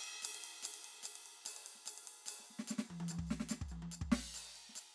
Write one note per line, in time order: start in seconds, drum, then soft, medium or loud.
0.01 ride medium
0.01 percussion soft
0.23 ride loud
0.23 percussion medium
0.35 ride medium
0.41 ride medium
0.41 percussion soft
0.63 ride loud
0.63 percussion loud
0.74 ride medium
0.81 ride medium
0.81 percussion soft
1.03 ride medium
1.03 percussion medium
1.16 ride medium
1.23 ride medium
1.23 percussion soft
1.46 ride loud
1.46 percussion loud
1.57 ride medium
1.66 ride medium
1.75 snare soft
1.86 ride loud
1.86 percussion medium
1.98 ride medium
2.05 ride medium
2.05 percussion soft
2.26 ride loud
2.26 percussion medium
2.40 snare soft
2.45 percussion soft
2.50 snare soft
2.59 snare soft
2.68 snare soft
2.68 percussion loud
2.78 snare medium
2.86 kick soft
2.86 percussion soft
2.90 high tom medium
3.00 high tom medium
3.08 high tom medium
3.08 percussion medium
3.19 kick soft
3.27 snare medium
3.27 percussion soft
3.40 snare medium
3.49 snare medium
3.49 percussion loud
3.61 kick soft
3.69 high tom soft
3.69 percussion soft
3.82 high tom medium
3.92 percussion medium
4.02 kick soft
4.12 snare medium
4.12 percussion soft
4.12 crash medium
4.34 percussion medium
4.34 ride soft
4.45 ride soft
4.55 ride soft
4.55 percussion soft
4.69 snare soft
4.76 ride medium
4.76 percussion loud